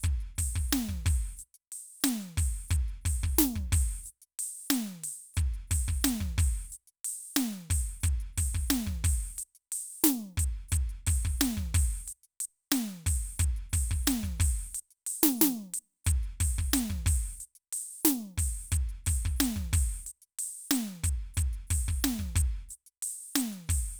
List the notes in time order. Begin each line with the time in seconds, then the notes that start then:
0.01 closed hi-hat, kick, hi-hat pedal
0.21 closed hi-hat
0.36 open hi-hat, kick, hi-hat pedal
0.56 kick
0.69 closed hi-hat, snare, hi-hat pedal
0.89 kick, closed hi-hat
1.02 hi-hat pedal
1.06 open hi-hat, kick
1.37 closed hi-hat, hi-hat pedal
1.54 closed hi-hat
1.72 open hi-hat
2.01 closed hi-hat, snare, hi-hat pedal
2.21 closed hi-hat
2.38 open hi-hat, kick
2.68 closed hi-hat, kick, hi-hat pedal
2.88 closed hi-hat
3.02 hi-hat pedal
3.06 open hi-hat, kick
3.24 kick
3.36 closed hi-hat, snare, hi-hat pedal
3.56 kick, closed hi-hat
3.73 open hi-hat, kick
4.04 closed hi-hat, hi-hat pedal
4.22 closed hi-hat
4.39 open hi-hat
4.67 snare, hi-hat pedal
4.71 closed hi-hat
4.88 closed hi-hat
5.01 open hi-hat, hi-hat pedal
5.34 closed hi-hat, kick, hi-hat pedal
5.54 closed hi-hat
5.68 open hi-hat, kick, hi-hat pedal
5.88 kick
6.01 closed hi-hat, snare, hi-hat pedal
6.21 kick, closed hi-hat
6.38 open hi-hat, kick
6.70 closed hi-hat, hi-hat pedal
6.88 closed hi-hat
7.05 open hi-hat
7.34 closed hi-hat, snare, hi-hat pedal
7.53 closed hi-hat
7.70 open hi-hat, kick, hi-hat pedal
8.01 closed hi-hat, kick, hi-hat pedal
8.20 closed hi-hat
8.33 hi-hat pedal
8.38 open hi-hat, kick
8.55 kick
8.68 closed hi-hat, snare, hi-hat pedal
8.87 kick, closed hi-hat
9.04 open hi-hat, kick
9.36 closed hi-hat, hi-hat pedal
9.55 closed hi-hat
9.72 open hi-hat
10.02 closed hi-hat, snare, hi-hat pedal
10.22 closed hi-hat
10.38 open hi-hat, kick
10.69 closed hi-hat, kick, hi-hat pedal
10.89 closed hi-hat
11.07 open hi-hat, kick
11.25 kick
11.38 closed hi-hat, snare, hi-hat pedal
11.57 kick, closed hi-hat
11.75 open hi-hat, kick
12.06 closed hi-hat, hi-hat pedal
12.24 closed hi-hat
12.41 open hi-hat
12.71 closed hi-hat, snare, hi-hat pedal
12.90 closed hi-hat
13.07 open hi-hat, kick
13.36 closed hi-hat, kick, hi-hat pedal
13.57 closed hi-hat
13.70 open hi-hat, kick, hi-hat pedal
13.91 kick
14.03 closed hi-hat, hi-hat pedal
14.08 snare
14.23 kick, closed hi-hat
14.38 open hi-hat, kick, hi-hat pedal
14.73 closed hi-hat, hi-hat pedal
14.91 closed hi-hat
15.07 open hi-hat
15.23 snare
15.37 hi-hat pedal
15.42 snare
15.74 closed hi-hat
16.05 closed hi-hat, kick, hi-hat pedal
16.23 closed hi-hat
16.41 open hi-hat, kick
16.59 kick
16.71 closed hi-hat, snare, hi-hat pedal
16.90 kick, closed hi-hat
17.06 open hi-hat, kick
17.38 closed hi-hat, hi-hat pedal
17.55 closed hi-hat
17.73 open hi-hat
18.01 hi-hat pedal
18.05 closed hi-hat, snare
18.22 closed hi-hat
18.38 open hi-hat, kick
18.68 closed hi-hat, kick, hi-hat pedal
18.89 closed hi-hat
19.04 open hi-hat, kick, hi-hat pedal
19.25 kick
19.37 snare, hi-hat pedal
19.41 closed hi-hat
19.56 kick, closed hi-hat
19.69 kick, hi-hat pedal
19.74 open hi-hat
20.04 closed hi-hat, hi-hat pedal
20.22 closed hi-hat
20.39 open hi-hat
20.68 closed hi-hat, snare, hi-hat pedal
20.87 closed hi-hat
21.04 open hi-hat, kick
21.34 closed hi-hat, kick, hi-hat pedal
21.53 closed hi-hat
21.67 open hi-hat, kick, hi-hat pedal
21.88 kick
22.00 hi-hat pedal
22.04 closed hi-hat, snare
22.19 kick, closed hi-hat
22.36 open hi-hat, kick
22.69 closed hi-hat, hi-hat pedal
22.87 closed hi-hat
23.03 open hi-hat
23.34 closed hi-hat, snare, hi-hat pedal
23.53 closed hi-hat
23.67 open hi-hat, kick, hi-hat pedal